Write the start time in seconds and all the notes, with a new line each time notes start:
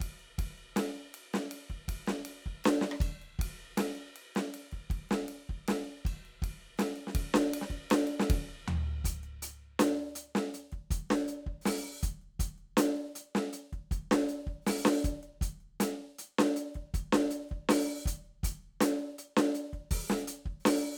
0.01 kick, ride
0.20 ride
0.39 kick, ride
0.58 ride
0.77 snare, ride
0.96 ride
1.13 hi-hat pedal, ride
1.34 snare, ride
1.52 ride
1.70 kick, ride
1.89 kick, ride
2.08 snare, ride
2.26 ride
2.44 kick, ride
2.65 snare, ride bell
2.82 snare
2.92 cross-stick
3.01 kick, ride bell
3.23 ride
3.40 kick, ride
3.58 ride
3.78 snare, ride
3.96 ride
4.15 hi-hat pedal, ride
4.36 snare, ride
4.55 ride
4.73 kick, ride
4.91 kick, ride
5.10 snare, ride
5.29 ride
5.48 kick, ride
5.69 snare, ride
5.85 ride
6.06 kick, ride bell
6.26 ride
6.43 kick, ride
6.64 ride
6.78 snare, hi-hat pedal, ride
6.97 ride
7.08 snare
7.15 kick, ride
7.35 snare
7.54 ride
7.62 snare
7.71 kick, ride
7.91 snare, ride
8.08 ride
8.20 snare
8.30 kick, ride
8.68 floor tom
9.05 closed hi-hat, kick
9.24 closed hi-hat
9.43 closed hi-hat
9.80 closed hi-hat, snare
9.97 closed hi-hat
10.16 closed hi-hat
10.36 snare, closed hi-hat
10.55 closed hi-hat
10.73 kick, closed hi-hat
10.91 closed hi-hat, kick
11.10 snare, closed hi-hat
11.29 closed hi-hat
11.47 kick
11.62 hi-hat pedal
11.66 open hi-hat, snare
12.02 closed hi-hat, kick, hi-hat pedal
12.22 closed hi-hat
12.40 closed hi-hat, kick
12.58 closed hi-hat
12.78 closed hi-hat, snare
12.97 closed hi-hat
13.16 closed hi-hat
13.36 snare, closed hi-hat
13.54 closed hi-hat
13.73 kick, closed hi-hat
13.92 closed hi-hat, kick
14.12 snare
14.29 closed hi-hat
14.47 kick, closed hi-hat
14.62 hi-hat pedal
14.67 open hi-hat, snare
14.86 snare
15.03 closed hi-hat, kick, hi-hat pedal
15.24 closed hi-hat
15.42 closed hi-hat, kick
15.61 closed hi-hat
15.81 closed hi-hat, snare
16.19 closed hi-hat
16.39 snare, closed hi-hat
16.43 snare
16.57 closed hi-hat
16.75 kick, closed hi-hat
16.95 closed hi-hat, kick
17.13 snare
17.31 closed hi-hat
17.50 kick, closed hi-hat
17.70 open hi-hat, snare
18.05 closed hi-hat, kick, hi-hat pedal
18.25 closed hi-hat
18.44 closed hi-hat, kick
18.63 closed hi-hat
18.81 closed hi-hat, snare
19.00 closed hi-hat
19.19 closed hi-hat
19.38 snare, closed hi-hat
19.55 closed hi-hat
19.74 kick, closed hi-hat
19.92 open hi-hat, kick
20.10 snare
20.21 hi-hat pedal
20.28 closed hi-hat
20.46 kick
20.61 hi-hat pedal
20.66 open hi-hat, snare